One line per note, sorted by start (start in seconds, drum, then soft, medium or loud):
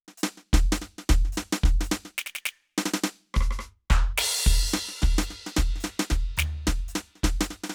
0.08 snare soft
0.17 hi-hat pedal medium
0.23 snare loud
0.37 snare soft
0.53 kick loud
0.53 snare loud
0.72 snare loud
0.72 hi-hat pedal medium
0.81 snare medium
0.98 snare medium
1.09 kick loud
1.09 snare loud
1.25 snare soft
1.32 hi-hat pedal medium
1.37 snare loud
1.52 snare loud
1.63 kick loud
1.63 snare medium
1.81 snare medium
1.81 hi-hat pedal medium
1.91 snare loud
2.05 snare soft
2.18 snare medium
2.26 snare medium
2.35 snare medium
2.45 snare loud
2.78 snare loud
2.85 snare loud
2.93 snare loud
3.03 snare loud
3.34 kick loud
3.34 cross-stick medium
3.41 cross-stick medium
3.51 cross-stick medium
3.59 cross-stick medium
3.90 kick loud
3.90 percussion loud
4.18 snare loud
4.18 crash loud
4.46 kick loud
4.63 snare soft
4.68 hi-hat pedal medium
4.73 snare loud
4.88 snare soft
5.02 kick loud
5.02 snare medium
5.18 snare loud
5.18 hi-hat pedal medium
5.30 snare soft
5.46 snare medium
5.57 kick loud
5.57 snare loud
5.76 snare soft
5.80 snare loud
5.80 hi-hat pedal medium
5.99 snare loud
6.10 kick loud
6.10 snare medium
6.37 snare loud
6.37 floor tom loud
6.37 hi-hat pedal medium
6.67 kick medium
6.67 snare loud
6.88 hi-hat pedal medium
6.95 snare loud
7.15 snare soft
7.23 kick medium
7.23 snare loud
7.41 snare loud
7.41 hi-hat pedal medium
7.50 snare medium
7.64 snare medium
7.69 snare medium